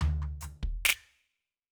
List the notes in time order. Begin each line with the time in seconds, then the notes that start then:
0.01 closed hi-hat, floor tom, high tom
0.22 floor tom, high tom
0.41 floor tom, hi-hat pedal, high tom
0.63 kick
0.85 snare
0.89 snare